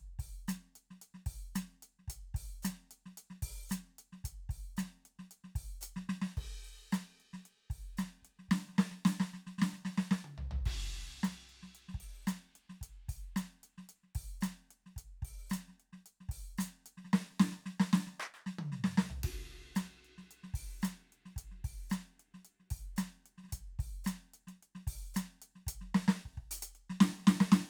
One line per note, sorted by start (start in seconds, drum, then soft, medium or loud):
0.20 kick soft
0.20 open hi-hat medium
0.49 snare medium
0.49 closed hi-hat loud
0.49 hi-hat pedal medium
0.76 closed hi-hat medium
0.91 snare soft
1.03 closed hi-hat medium
1.15 snare soft
1.27 kick soft
1.27 open hi-hat medium
1.56 snare medium
1.56 closed hi-hat loud
1.56 hi-hat pedal medium
1.83 closed hi-hat medium
2.00 snare soft
2.09 kick soft
2.09 closed hi-hat loud
2.35 kick soft
2.35 open hi-hat medium
2.64 snare medium
2.64 closed hi-hat loud
2.64 hi-hat pedal medium
2.92 closed hi-hat medium
3.07 snare soft
3.18 closed hi-hat medium
3.31 snare soft
3.43 kick soft
3.43 open hi-hat loud
3.70 snare medium
3.70 closed hi-hat loud
3.70 hi-hat pedal medium
3.99 closed hi-hat medium
4.13 snare soft
4.25 kick soft
4.25 closed hi-hat medium
4.50 kick soft
4.50 open hi-hat medium
4.78 snare medium
4.78 closed hi-hat medium
4.78 hi-hat pedal medium
5.06 closed hi-hat soft
5.20 snare soft
5.32 closed hi-hat medium
5.45 snare soft
5.56 kick soft
5.56 open hi-hat medium
5.82 closed hi-hat loud
5.82 hi-hat pedal medium
5.97 snare soft
6.10 snare medium
6.23 snare medium
6.38 kick soft
6.38 crash medium
6.65 open hi-hat soft
6.93 snare loud
6.93 closed hi-hat medium
6.93 hi-hat pedal medium
7.21 closed hi-hat soft
7.34 snare soft
7.46 closed hi-hat soft
7.71 kick soft
7.71 open hi-hat medium
7.98 snare medium
7.98 closed hi-hat medium
7.98 hi-hat pedal medium
8.20 kick soft
8.20 snare soft
8.26 closed hi-hat soft
8.40 snare soft
8.45 snare soft
8.49 kick soft
8.49 snare loud
8.63 snare soft
8.70 snare soft
8.76 snare soft
8.79 snare loud
8.92 snare soft
9.06 snare loud
9.06 hi-hat pedal medium
9.21 snare loud
9.34 snare soft
9.48 snare soft
9.59 snare medium
9.63 snare loud
9.74 snare soft
9.86 snare medium
9.99 snare loud
10.12 snare loud
10.25 high tom medium
10.39 floor tom medium
10.52 floor tom medium
10.67 kick soft
10.67 ride loud
11.24 snare loud
11.24 closed hi-hat medium
11.50 closed hi-hat soft
11.64 snare soft
11.76 closed hi-hat medium
11.89 snare soft
11.95 kick soft
12.01 open hi-hat medium
12.28 snare medium
12.28 closed hi-hat medium
12.28 hi-hat pedal medium
12.56 closed hi-hat soft
12.70 snare soft
12.82 kick soft
12.82 closed hi-hat medium
13.09 kick soft
13.09 open hi-hat medium
13.37 snare medium
13.37 closed hi-hat medium
13.37 hi-hat pedal medium
13.64 closed hi-hat medium
13.79 snare soft
13.90 closed hi-hat medium
14.04 snare soft
14.16 kick soft
14.16 open hi-hat medium
14.42 snare medium
14.42 closed hi-hat medium
14.42 hi-hat pedal medium
14.72 closed hi-hat soft
14.87 snare soft
14.97 kick soft
14.97 closed hi-hat medium
15.23 kick soft
15.23 open hi-hat medium
15.51 snare medium
15.51 closed hi-hat loud
15.51 hi-hat pedal medium
15.69 snare soft
15.81 closed hi-hat soft
15.94 snare soft
16.07 closed hi-hat medium
16.21 snare soft
16.30 kick soft
16.30 open hi-hat medium
16.59 closed hi-hat loud
16.59 snare medium
16.59 hi-hat pedal medium
16.77 snare soft
16.87 closed hi-hat medium
16.98 snare soft
17.05 snare soft
17.14 snare loud
17.24 snare soft
17.31 snare soft
17.41 snare loud
17.53 snare soft
17.67 snare medium
17.81 snare loud
17.94 snare loud
18.07 snare soft
18.21 percussion loud
18.35 percussion medium
18.47 snare medium
18.60 high tom loud
18.73 snare soft
18.85 snare loud
18.99 snare loud
19.11 floor tom medium
19.24 kick medium
19.24 ride loud
19.76 snare medium
19.76 closed hi-hat medium
19.76 hi-hat pedal medium
20.05 closed hi-hat soft
20.19 snare soft
20.32 closed hi-hat medium
20.44 snare soft
20.55 kick soft
20.55 open hi-hat medium
20.83 snare medium
20.83 closed hi-hat medium
20.83 hi-hat pedal medium
21.13 closed hi-hat soft
21.26 snare soft
21.37 kick soft
21.37 closed hi-hat medium
21.52 snare soft
21.65 kick soft
21.65 open hi-hat medium
21.91 snare medium
21.91 closed hi-hat medium
21.91 hi-hat pedal medium
22.21 closed hi-hat soft
22.35 snare soft
22.46 closed hi-hat medium
22.61 snare soft
22.71 kick soft
22.71 open hi-hat medium
22.97 snare medium
22.97 closed hi-hat loud
22.97 hi-hat pedal medium
23.27 closed hi-hat soft
23.39 snare soft
23.45 snare soft
23.50 kick soft
23.50 snare soft
23.50 closed hi-hat loud
23.56 snare soft
23.80 kick soft
23.80 open hi-hat medium
24.05 snare medium
24.05 closed hi-hat loud
24.05 hi-hat pedal medium
24.35 closed hi-hat medium
24.48 snare soft
24.48 closed hi-hat soft
24.64 closed hi-hat soft
24.76 snare soft
24.88 kick soft
24.88 open hi-hat loud
25.15 snare medium
25.15 closed hi-hat loud
25.15 hi-hat pedal medium
25.43 closed hi-hat medium
25.56 snare soft
25.68 kick soft
25.68 closed hi-hat loud
25.82 snare soft
25.96 snare loud
26.09 snare loud
26.26 kick soft
26.38 kick soft
26.52 closed hi-hat loud
26.63 closed hi-hat loud
26.76 closed hi-hat soft
26.91 snare medium
27.01 snare loud
27.14 snare soft
27.19 snare soft
27.24 snare soft
27.28 snare loud
27.41 snare loud
27.53 snare loud